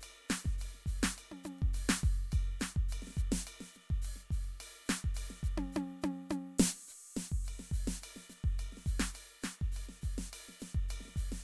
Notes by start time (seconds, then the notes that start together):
0.01 hi-hat pedal, ride bell
0.29 snare, hi-hat pedal
0.45 kick, snare
0.58 hi-hat pedal, ride bell
0.74 snare
0.86 kick, hi-hat pedal, ride
1.02 snare, ride
1.16 hi-hat pedal, ride bell
1.32 high tom
1.44 hi-hat pedal, high tom, ride
1.59 kick, ride
1.74 hi-hat pedal, ride bell
1.89 snare
2.02 kick, hi-hat pedal, ride
2.17 ride
2.31 kick, hi-hat pedal, ride bell
2.60 snare, hi-hat pedal, ride
2.75 kick, ride
2.89 hi-hat pedal, ride bell
3.02 snare
3.07 snare
3.10 snare
3.17 kick, hi-hat pedal, ride
3.32 snare, ride
3.45 hi-hat pedal, ride bell
3.61 snare
3.73 snare, hi-hat pedal, ride
3.89 kick, ride
4.02 hi-hat pedal, ride
4.16 snare
4.31 kick, hi-hat pedal, ride
4.45 ride
4.60 hi-hat pedal, ride bell
4.86 snare, hi-hat pedal
4.90 ride bell
5.03 kick, ride
5.14 hi-hat pedal, ride bell
5.30 snare
5.43 kick, hi-hat pedal, ride
5.58 open hi-hat, high tom
5.72 hi-hat pedal, high tom
5.78 closed hi-hat
6.02 closed hi-hat, hi-hat pedal, high tom
6.30 closed hi-hat, hi-hat pedal, high tom
6.59 snare, hi-hat pedal, crash
6.88 hi-hat pedal
6.92 ride
7.15 snare, hi-hat pedal
7.32 kick
7.44 hi-hat pedal
7.48 ride bell
7.59 snare
7.72 kick, hi-hat pedal, ride
7.87 snare, ride
8.02 hi-hat pedal, ride bell
8.16 snare
8.30 snare, hi-hat pedal, ride
8.37 snare
8.44 kick, ride
8.59 hi-hat pedal, ride bell
8.72 snare
8.77 snare
8.86 kick, hi-hat pedal, ride
9.00 snare, ride
9.14 hi-hat pedal, ride bell
9.42 snare, hi-hat pedal, ride
9.59 kick, ride
9.64 snare
9.72 hi-hat pedal
9.77 ride bell
9.89 snare
10.01 kick, hi-hat pedal
10.05 ride
10.18 snare, ride
10.33 hi-hat pedal, ride bell
10.49 snare
10.60 snare, hi-hat pedal, ride
10.75 kick, ride
10.89 hi-hat pedal, ride bell
11.01 snare
11.05 snare
11.08 snare
11.16 kick, hi-hat pedal, ride
11.32 snare, ride